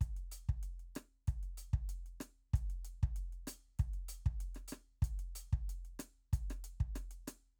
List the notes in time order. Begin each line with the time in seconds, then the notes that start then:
0.01 kick, closed hi-hat
0.17 closed hi-hat
0.32 closed hi-hat
0.49 kick
0.63 closed hi-hat
0.80 closed hi-hat
0.96 cross-stick, closed hi-hat
1.28 kick, closed hi-hat
1.43 closed hi-hat
1.58 closed hi-hat
1.73 kick
1.89 closed hi-hat
2.06 closed hi-hat
2.21 cross-stick, closed hi-hat
2.54 kick, closed hi-hat
2.70 closed hi-hat
2.85 closed hi-hat
3.03 kick
3.16 closed hi-hat
3.33 closed hi-hat
3.47 closed hi-hat, cross-stick
3.79 kick, closed hi-hat
3.94 closed hi-hat
4.09 closed hi-hat
4.26 kick
4.41 closed hi-hat
4.55 cross-stick, closed hi-hat
4.68 closed hi-hat
4.72 cross-stick
5.02 kick, closed hi-hat
5.19 closed hi-hat
5.36 closed hi-hat
5.53 kick
5.70 closed hi-hat
5.85 closed hi-hat
5.99 cross-stick, closed hi-hat
6.33 kick, closed hi-hat
6.50 cross-stick, closed hi-hat
6.64 closed hi-hat
6.80 kick
6.96 cross-stick, closed hi-hat
7.11 closed hi-hat
7.28 cross-stick, closed hi-hat